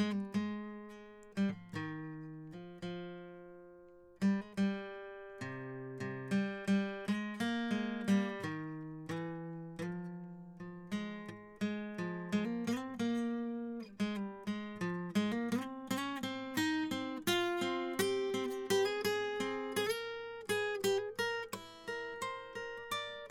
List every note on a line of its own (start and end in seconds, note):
0.00 0.12 G#3
0.13 0.35 G3
0.36 0.91 G#3
0.91 1.36 G#3
1.39 1.48 G3
1.51 1.69 F3
1.75 2.60 D#3
2.56 2.82 F3
2.84 4.21 F3
4.23 4.42 G3
4.42 4.57 G#3
4.59 6.32 F#3
5.43 6.01 C3
6.02 6.39 C3
6.33 6.68 G3
6.70 7.09 G3
7.10 7.52 G#3
7.42 8.44 A#3
7.72 8.07 G#3
8.09 8.54 G3
8.46 9.10 D#3
9.11 9.80 E3
9.81 10.45 F3
10.62 10.97 F3
10.93 11.61 G#3
11.63 12.33 G#3
12.00 12.77 F3
12.34 12.47 G#3
12.47 12.67 A#3
12.69 12.79 B3
12.79 13.00 C4
13.01 13.86 A#3
14.01 14.17 G#3
14.17 14.47 G3
14.49 14.81 G#3
14.83 15.15 F3
15.17 15.33 G#3
15.34 15.52 A#3
15.54 15.90 C4
15.92 16.24 C#4
16.25 16.64 C4
16.59 16.92 D#4
16.93 17.23 C4
17.29 17.98 F4
17.63 18.33 C4
18.01 18.69 G4
18.36 18.51 C4
18.72 18.86 G4
18.87 19.05 G#4
19.07 19.76 G#4
19.42 19.89 C4
19.78 19.88 G#4
19.88 20.47 A#4
20.51 20.84 G#4
20.86 21.00 G4
21.00 21.15 G#4
21.20 21.50 A#4
21.89 22.57 A#4
22.24 22.88 C5
22.57 23.30 A#4
22.93 23.31 D5